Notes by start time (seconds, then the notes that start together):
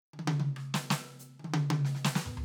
0.13 high tom
0.19 high tom
0.27 high tom
0.40 high tom
0.56 cross-stick
0.74 snare
0.90 snare
1.19 hi-hat pedal
1.39 high tom
1.44 high tom
1.54 high tom
1.70 high tom
1.85 snare
1.95 snare
2.04 snare
2.15 snare
2.26 mid tom
2.37 floor tom